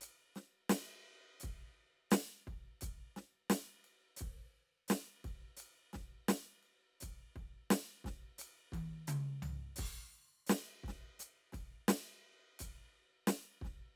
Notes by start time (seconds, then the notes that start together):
0.01 hi-hat pedal, ride
0.35 snare, ride
0.70 snare, hi-hat pedal, ride
1.40 kick, hi-hat pedal, ride
2.11 snare, hi-hat pedal, ride
2.47 kick, ride
2.81 kick, hi-hat pedal, ride
3.16 snare, ride
3.50 snare, hi-hat pedal, ride
3.84 ride
4.17 hi-hat pedal, crash
4.21 kick
4.88 snare, hi-hat pedal, ride
5.24 kick, ride
5.57 hi-hat pedal, ride
5.93 kick, snare, ride
6.28 snare, hi-hat pedal, ride
6.63 ride
7.00 kick, hi-hat pedal, ride
7.36 kick, ride
7.70 snare, hi-hat pedal, ride
8.04 kick, snare, ride
8.38 hi-hat pedal, ride
8.72 kick, high tom, ride
9.07 hi-hat pedal, mid tom, ride
9.42 floor tom, ride
9.76 kick, hi-hat pedal, crash
10.47 snare, hi-hat pedal, ride
10.84 kick, ride
10.88 snare
11.19 hi-hat pedal, ride
11.52 kick, snare, ride
11.88 snare, hi-hat pedal, ride
12.59 kick, hi-hat pedal, ride
13.27 snare, hi-hat pedal, ride
13.61 kick, snare, ride